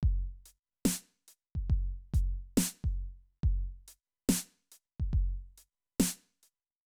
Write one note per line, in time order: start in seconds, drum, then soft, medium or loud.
0.03 kick medium
0.46 closed hi-hat medium
0.86 snare loud
1.28 closed hi-hat medium
1.56 kick soft
1.70 kick medium
2.14 kick medium
2.14 closed hi-hat medium
2.58 snare loud
2.84 kick medium
3.44 kick medium
3.44 ride soft
3.88 closed hi-hat medium
4.29 snare loud
4.72 closed hi-hat medium
5.00 kick medium
5.14 kick medium
5.14 crash soft
5.58 closed hi-hat medium
6.00 snare loud
6.43 closed hi-hat soft